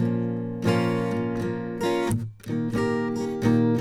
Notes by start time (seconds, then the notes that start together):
0.01 A#2 F3 A#3 C#4
0.07 F4
0.64 A#2 F3 A#3
0.68 C#4 F4 A#4
1.12 A#2 F3
1.38 A#2 F3
1.44 A#3 C#4
1.82 F4 A#4
1.87 C#4
2.18 A2
2.47 A#2 D#3
2.53 A#3
2.70 D#3
2.75 A#3 C4 G4 A#4
3.17 G4 A#4
3.22 C#4
3.43 A#2 D#3 A#3 C4
3.76 D#3